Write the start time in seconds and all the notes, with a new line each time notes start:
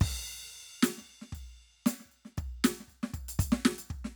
0.01 kick, crash
0.83 snare, percussion
0.98 kick, snare
1.22 snare
1.33 kick, percussion
1.87 snare, percussion
2.01 snare
2.06 kick
2.12 percussion
2.26 snare
2.38 kick, percussion
2.65 snare, percussion
2.81 snare
2.88 kick, percussion
3.03 snare
3.08 snare
3.14 kick, percussion
3.29 percussion
3.40 kick, percussion
3.52 snare
3.66 snare
3.79 percussion
3.91 kick
4.05 snare